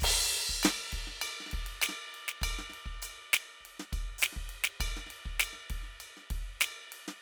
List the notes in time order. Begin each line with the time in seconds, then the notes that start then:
0.01 kick, hi-hat pedal, crash
0.14 snare
0.50 kick
0.64 snare, hi-hat pedal, ride bell
0.93 kick, ride
0.99 kick
1.07 snare
1.22 hi-hat pedal, ride bell
1.41 snare
1.47 snare
1.50 kick, snare, ride
1.60 kick
1.67 ride
1.82 snare, hi-hat pedal, ride bell
1.89 snare
2.15 ride
2.29 snare
2.42 kick, hi-hat pedal, ride bell
2.49 kick
2.50 kick
2.59 snare
2.70 snare
2.74 ride
2.86 kick
3.02 hi-hat pedal, ride bell
3.34 snare, ride bell
3.61 kick
3.66 ride
3.80 snare
3.93 kick, ride bell
4.01 kick
4.19 hi-hat pedal, ride
4.23 snare
4.33 kick, snare
4.50 ride
4.64 snare
4.80 kick, ride bell
4.88 kick
4.91 kick
4.97 snare
5.07 snare, ride
5.26 kick
5.40 snare, hi-hat pedal, ride bell
5.53 snare
5.70 kick, ride
5.77 kick
5.84 snare
6.01 hi-hat pedal, ride bell
6.17 snare
6.21 snare
6.31 kick, ride
6.38 kick
6.61 snare, hi-hat pedal, ride bell
6.92 ride
7.08 snare